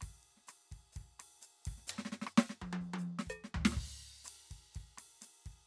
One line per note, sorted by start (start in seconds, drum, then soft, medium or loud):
0.01 kick soft
0.01 cross-stick soft
0.01 snare soft
0.01 hi-hat pedal soft
0.01 ride medium
0.08 kick soft
0.24 ride soft
0.37 snare soft
0.48 cross-stick soft
0.48 hi-hat pedal medium
0.48 ride medium
0.72 kick soft
0.72 ride soft
0.93 kick soft
0.93 hi-hat pedal soft
0.97 ride soft
1.01 kick soft
1.20 cross-stick soft
1.20 ride medium
1.42 hi-hat pedal medium
1.42 ride soft
1.62 hi-hat pedal soft
1.62 ride medium
1.67 kick soft
1.73 kick soft
1.78 snare soft
1.88 hi-hat pedal loud
1.88 floor tom loud
1.99 snare soft
2.06 snare soft
2.13 snare soft
2.22 snare soft
2.27 cross-stick medium
2.38 snare loud
2.50 snare soft
2.62 kick soft
2.62 high tom medium
2.73 high tom medium
2.81 kick soft
2.81 hi-hat pedal soft
2.86 high tom soft
2.94 open hi-hat soft
2.94 high tom medium
2.99 hi-hat pedal medium
3.07 high tom soft
3.19 snare medium
3.27 kick soft
3.27 hi-hat pedal medium
3.27 percussion loud
3.44 snare soft
3.55 kick soft
3.55 floor tom medium
3.62 kick soft
3.62 snare loud
3.73 snare soft
3.77 kick soft
3.77 crash medium
3.83 kick soft
4.25 cross-stick soft
4.25 hi-hat pedal loud
4.25 ride medium
4.51 kick soft
4.51 ride soft
4.73 kick soft
4.73 hi-hat pedal soft
4.73 ride soft
4.81 kick soft
4.98 cross-stick soft
4.98 snare soft
4.98 ride medium
5.22 snare soft
5.22 hi-hat pedal medium
5.22 ride medium
5.46 kick soft
5.46 ride soft